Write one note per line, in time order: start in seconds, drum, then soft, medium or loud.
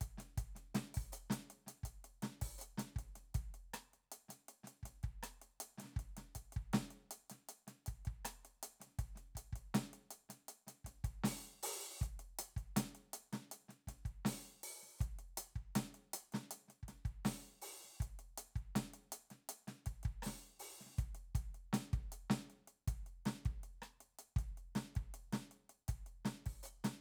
0.01 kick soft
0.01 closed hi-hat medium
0.18 snare soft
0.18 closed hi-hat soft
0.38 kick soft
0.38 closed hi-hat medium
0.55 snare soft
0.55 closed hi-hat soft
0.75 snare medium
0.75 closed hi-hat medium
0.94 kick soft
0.94 open hi-hat medium
1.12 closed hi-hat medium
1.12 hi-hat pedal medium
1.30 snare medium
1.30 closed hi-hat medium
1.50 closed hi-hat soft
1.66 snare soft
1.66 closed hi-hat medium
1.83 kick soft
1.83 closed hi-hat medium
2.04 closed hi-hat soft
2.22 snare soft
2.22 closed hi-hat soft
2.41 kick soft
2.41 open hi-hat medium
2.58 closed hi-hat medium
2.58 hi-hat pedal medium
2.78 snare soft
2.78 closed hi-hat medium
2.96 kick soft
2.96 closed hi-hat soft
3.15 snare soft
3.15 closed hi-hat soft
3.34 kick soft
3.34 closed hi-hat medium
3.54 closed hi-hat soft
3.74 cross-stick medium
3.74 closed hi-hat medium
3.93 closed hi-hat soft
4.12 closed hi-hat medium
4.28 snare soft
4.28 closed hi-hat medium
4.48 closed hi-hat soft
4.63 snare soft
4.63 closed hi-hat soft
4.83 kick soft
4.83 snare soft
4.83 closed hi-hat soft
5.03 kick soft
5.03 closed hi-hat soft
5.23 cross-stick medium
5.23 closed hi-hat medium
5.42 closed hi-hat soft
5.60 closed hi-hat medium
5.78 snare soft
5.78 closed hi-hat soft
5.81 snare soft
5.84 snare soft
5.92 snare soft
5.96 kick soft
5.96 closed hi-hat soft
6.17 snare soft
6.17 closed hi-hat soft
6.35 kick soft
6.35 closed hi-hat medium
6.52 closed hi-hat soft
6.56 kick soft
6.73 snare medium
6.73 closed hi-hat soft
6.90 closed hi-hat soft
7.11 closed hi-hat medium
7.30 snare soft
7.30 closed hi-hat medium
7.49 closed hi-hat medium
7.67 snare soft
7.67 closed hi-hat soft
7.86 kick soft
7.86 closed hi-hat medium
8.05 kick soft
8.05 closed hi-hat soft
8.25 cross-stick medium
8.25 closed hi-hat medium
8.45 closed hi-hat soft
8.63 closed hi-hat medium
8.80 snare soft
8.80 closed hi-hat soft
8.83 snare soft
8.86 snare soft
8.90 snare soft
8.99 kick soft
8.99 closed hi-hat soft
9.15 snare soft
9.15 closed hi-hat soft
9.35 kick soft
9.35 closed hi-hat medium
9.53 kick soft
9.53 closed hi-hat soft
9.74 snare medium
9.74 closed hi-hat medium
9.93 closed hi-hat soft
10.11 closed hi-hat medium
10.29 snare soft
10.29 closed hi-hat medium
10.48 closed hi-hat medium
10.67 snare soft
10.67 closed hi-hat medium
10.84 kick soft
10.84 snare soft
10.84 closed hi-hat soft
11.04 kick soft
11.04 closed hi-hat soft
11.24 open hi-hat medium
11.24 snare medium
11.63 open hi-hat loud
12.01 kick soft
12.01 closed hi-hat soft
12.01 hi-hat pedal soft
12.19 closed hi-hat soft
12.39 closed hi-hat loud
12.56 kick soft
12.56 closed hi-hat soft
12.76 snare medium
12.76 closed hi-hat medium
12.95 closed hi-hat soft
13.13 closed hi-hat medium
13.33 snare soft
13.33 closed hi-hat soft
13.51 closed hi-hat medium
13.68 snare soft
13.68 closed hi-hat soft
13.87 kick soft
13.87 snare soft
13.87 closed hi-hat soft
14.05 kick soft
14.05 closed hi-hat soft
14.25 open hi-hat medium
14.25 snare medium
14.63 open hi-hat medium
14.82 snare soft
14.99 kick soft
14.99 closed hi-hat soft
14.99 hi-hat pedal soft
15.19 closed hi-hat soft
15.37 closed hi-hat medium
15.56 kick soft
15.56 closed hi-hat soft
15.75 snare medium
15.75 closed hi-hat medium
15.94 closed hi-hat soft
16.13 closed hi-hat medium
16.32 snare soft
16.32 closed hi-hat soft
16.51 closed hi-hat medium
16.68 snare soft
16.68 closed hi-hat soft
16.83 kick soft
16.88 snare soft
16.88 closed hi-hat soft
17.05 kick soft
17.05 closed hi-hat soft
17.25 open hi-hat medium
17.25 snare medium
17.62 open hi-hat medium
17.84 snare soft
17.99 kick soft
17.99 closed hi-hat soft
17.99 hi-hat pedal soft
18.19 closed hi-hat soft
18.38 closed hi-hat medium
18.56 kick soft
18.56 closed hi-hat soft
18.75 snare medium
18.75 closed hi-hat medium
18.94 closed hi-hat soft
19.12 closed hi-hat medium
19.30 snare soft
19.30 closed hi-hat soft
19.49 closed hi-hat medium
19.67 snare soft
19.67 closed hi-hat soft
19.86 kick soft
19.86 closed hi-hat soft
20.03 kick soft
20.03 closed hi-hat soft
20.22 open hi-hat medium
20.22 cross-stick medium
20.22 snare soft
20.60 open hi-hat medium
20.80 snare soft
20.86 snare soft
20.90 snare soft
20.95 kick soft
20.95 snare soft
20.95 closed hi-hat soft
20.95 hi-hat pedal soft
21.15 closed hi-hat soft
21.35 kick soft
21.35 closed hi-hat medium
21.54 closed hi-hat soft
21.73 snare medium
21.73 closed hi-hat medium
21.93 kick soft
21.93 closed hi-hat soft
22.12 closed hi-hat medium
22.30 snare medium
22.30 closed hi-hat soft
22.50 closed hi-hat soft
22.68 closed hi-hat soft
22.88 kick soft
22.88 closed hi-hat medium
23.06 closed hi-hat soft
23.25 snare medium
23.25 closed hi-hat soft
23.45 kick soft
23.45 closed hi-hat soft
23.63 closed hi-hat soft
23.82 cross-stick medium
23.82 closed hi-hat soft
24.00 closed hi-hat soft
24.19 closed hi-hat medium
24.36 kick soft
24.36 closed hi-hat soft
24.57 closed hi-hat soft
24.75 snare medium
24.75 closed hi-hat soft
24.95 kick soft
24.95 closed hi-hat soft
25.14 closed hi-hat soft
25.33 snare medium
25.33 closed hi-hat soft
25.51 closed hi-hat soft
25.69 closed hi-hat soft
25.88 kick soft
25.88 closed hi-hat medium
26.06 closed hi-hat soft
26.25 snare medium
26.25 closed hi-hat soft
26.46 kick soft
26.46 open hi-hat soft
26.63 closed hi-hat soft
26.63 hi-hat pedal medium
26.84 snare medium
26.84 closed hi-hat medium